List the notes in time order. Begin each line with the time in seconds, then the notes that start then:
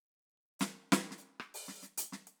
0.59 snare, hi-hat pedal
0.92 snare
1.11 snare
1.18 hi-hat pedal
1.40 cross-stick
1.54 open hi-hat
1.68 snare
1.83 snare, hi-hat pedal
1.98 closed hi-hat
2.12 snare
2.27 closed hi-hat